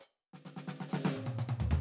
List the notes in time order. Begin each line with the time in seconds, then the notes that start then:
0.00 hi-hat pedal
0.33 snare
0.45 snare, hi-hat pedal
0.56 snare
0.67 snare
0.80 snare
0.89 hi-hat pedal
0.93 snare
1.05 snare
1.16 closed hi-hat, high tom
1.26 high tom
1.38 hi-hat pedal, high tom
1.49 high tom
1.60 floor tom
1.71 floor tom